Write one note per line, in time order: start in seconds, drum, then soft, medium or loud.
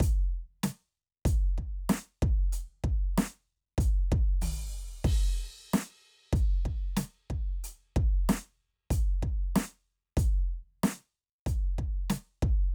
0.01 closed hi-hat loud
0.01 kick loud
0.64 closed hi-hat loud
0.64 snare loud
1.26 closed hi-hat loud
1.26 kick loud
1.59 kick medium
1.90 closed hi-hat loud
1.90 snare loud
2.23 kick loud
2.53 closed hi-hat loud
2.85 kick loud
3.18 closed hi-hat loud
3.18 snare loud
3.79 closed hi-hat loud
3.79 kick loud
4.13 kick loud
4.42 open hi-hat loud
4.42 floor tom loud
5.05 kick loud
5.05 hi-hat pedal soft
5.05 crash loud
5.74 closed hi-hat loud
5.74 snare loud
6.34 closed hi-hat medium
6.34 kick loud
6.66 kick medium
6.97 closed hi-hat loud
6.97 snare loud
7.31 kick medium
7.65 closed hi-hat loud
7.97 kick loud
8.30 closed hi-hat loud
8.30 snare loud
8.91 closed hi-hat loud
8.91 kick loud
9.23 kick medium
9.57 closed hi-hat loud
9.57 snare loud
10.18 closed hi-hat loud
10.18 kick loud
10.84 closed hi-hat loud
10.84 snare loud
10.94 snare soft
11.47 closed hi-hat medium
11.47 kick loud
11.79 kick medium
12.11 closed hi-hat loud
12.11 snare loud
12.43 kick loud